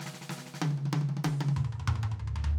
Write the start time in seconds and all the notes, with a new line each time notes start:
0.00 snare
0.06 snare
0.14 snare
0.21 snare
0.29 snare
0.38 snare
0.46 snare
0.54 snare
0.62 high tom
0.70 high tom
0.77 high tom
0.85 high tom
0.93 high tom
1.01 high tom
1.09 high tom
1.17 high tom
1.24 kick, crash, high tom
1.32 high tom
1.41 high tom
1.48 high tom
1.56 mid tom
1.65 mid tom
1.72 mid tom
1.80 mid tom
1.87 kick, mid tom
1.95 mid tom
2.03 mid tom
2.11 mid tom
2.19 floor tom
2.27 floor tom
2.36 floor tom
2.44 floor tom